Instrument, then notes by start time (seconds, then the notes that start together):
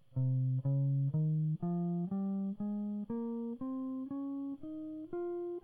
electric guitar
0.19 C3
0.67 C#3
1.15 D#3
1.64 F3
2.13 G3
2.61 G#3
3.11 A#3
3.62 C4
4.11 C#4
4.63 D#4
5.14 F4